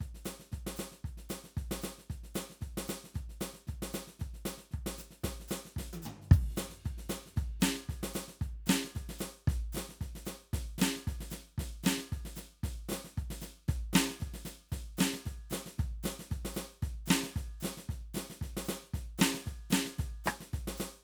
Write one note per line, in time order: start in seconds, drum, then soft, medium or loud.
0.01 kick soft
0.01 snare soft
0.15 snare soft
0.25 snare medium
0.25 hi-hat pedal medium
0.40 snare soft
0.52 kick soft
0.52 snare soft
0.67 snare medium
0.77 snare medium
0.77 hi-hat pedal medium
0.92 snare soft
1.05 kick soft
1.05 snare soft
1.18 snare soft
1.30 snare medium
1.30 hi-hat pedal medium
1.44 snare soft
1.57 kick medium
1.57 snare soft
1.72 snare medium
1.82 snare medium
1.82 hi-hat pedal medium
1.99 snare soft
2.10 kick soft
2.10 snare soft
2.24 snare soft
2.35 snare loud
2.35 hi-hat pedal medium
2.51 snare soft
2.62 kick soft
2.62 snare soft
2.78 snare medium
2.88 snare medium
2.88 hi-hat pedal medium
3.04 snare soft
3.15 kick medium
3.15 snare soft
3.30 snare soft
3.41 snare medium
3.41 hi-hat pedal medium
3.54 snare soft
3.68 kick soft
3.68 snare soft
3.83 snare medium
3.94 snare medium
3.94 hi-hat pedal medium
4.08 snare soft
4.20 kick soft
4.20 snare soft
4.34 snare soft
4.46 snare medium
4.46 hi-hat pedal medium
4.58 snare soft
4.71 kick medium
4.71 snare soft
4.87 snare medium
4.98 snare soft
4.98 hi-hat pedal medium
5.11 snare soft
5.21 kick soft
5.21 snare medium
5.21 hi-hat pedal soft
5.40 snare soft
5.48 snare loud
5.48 hi-hat pedal medium
5.66 snare soft
5.77 kick soft
5.77 snare medium
5.94 high tom loud
6.03 floor tom loud
6.03 hi-hat pedal medium
6.22 snare soft
6.32 kick loud
6.32 ride medium
6.50 snare soft
6.57 snare loud
6.57 hi-hat pedal medium
6.71 snare soft
6.85 kick medium
6.85 snare soft
6.98 snare soft
7.10 snare loud
7.10 hi-hat pedal medium
7.27 snare soft
7.37 kick medium
7.37 snare soft
7.60 snare soft
7.60 hi-hat pedal medium
7.63 snare loud
7.75 snare soft
7.89 kick soft
7.89 snare soft
8.04 snare medium
8.14 snare medium
8.14 hi-hat pedal medium
8.29 snare soft
8.42 kick medium
8.42 snare soft
8.67 snare medium
8.67 hi-hat pedal medium
8.70 snare loud
8.85 snare soft
8.96 kick soft
8.96 snare soft
9.10 snare medium
9.19 snare medium
9.19 hi-hat pedal medium
9.48 kick medium
9.48 snare medium
9.73 snare medium
9.73 hi-hat pedal medium
9.77 snare medium
9.90 snare soft
10.01 kick soft
10.01 snare soft
10.16 snare soft
10.26 snare medium
10.26 hi-hat pedal medium
10.54 kick medium
10.54 snare medium
10.79 snare medium
10.79 hi-hat pedal medium
10.82 snare loud
10.97 snare soft
11.08 kick medium
11.08 snare soft
11.21 snare medium
11.31 snare medium
11.31 hi-hat pedal medium
11.58 kick medium
11.58 snare medium
11.84 snare medium
11.84 hi-hat pedal medium
11.87 snare loud
11.98 snare soft
12.12 kick medium
12.12 snare soft
12.26 snare medium
12.36 snare medium
12.36 hi-hat pedal medium
12.64 kick medium
12.64 snare medium
12.89 snare medium
12.89 hi-hat pedal medium
12.92 snare medium
13.05 snare soft
13.18 kick medium
13.18 snare soft
13.31 snare medium
13.42 snare medium
13.42 hi-hat pedal medium
13.69 kick medium
13.69 snare medium
13.94 snare medium
13.94 hi-hat pedal medium
13.96 snare loud
14.10 snare soft
14.21 kick soft
14.21 snare soft
14.34 snare medium
14.46 snare medium
14.46 hi-hat pedal medium
14.69 kick medium
14.69 snare medium
14.69 hi-hat pedal soft
14.98 snare medium
14.98 hi-hat pedal medium
15.01 snare loud
15.14 snare medium
15.26 kick soft
15.26 snare soft
15.51 snare medium
15.51 hi-hat pedal medium
15.53 snare loud
15.67 snare medium
15.79 kick medium
15.79 snare soft
16.04 snare medium
16.04 snare loud
16.04 hi-hat pedal medium
16.20 snare medium
16.31 kick medium
16.31 snare soft
16.45 snare medium
16.54 snare medium
16.54 hi-hat pedal medium
16.83 kick medium
16.83 snare soft
17.06 snare medium
17.06 hi-hat pedal medium
17.11 snare loud
17.24 snare medium
17.36 kick medium
17.36 snare soft
17.61 snare medium
17.61 hi-hat pedal medium
17.65 snare medium
17.78 snare medium
17.89 kick medium
17.89 snare soft
18.14 snare medium
18.14 hi-hat pedal medium
18.17 snare medium
18.30 snare medium
18.42 kick soft
18.42 snare soft
18.57 snare medium
18.65 snare loud
18.65 hi-hat pedal medium
18.84 snare soft
18.94 kick medium
18.94 snare soft
19.18 snare medium
19.18 hi-hat pedal medium
19.22 snare loud
19.35 snare medium
19.46 kick soft
19.46 snare soft
19.71 snare medium
19.71 hi-hat pedal medium
19.73 snare loud
19.86 snare soft
19.99 kick medium
19.99 snare soft
20.25 cross-stick medium
20.25 snare medium
20.25 hi-hat pedal medium
20.41 snare soft
20.54 kick medium
20.54 snare soft
20.68 snare medium
20.78 snare medium
20.78 hi-hat pedal medium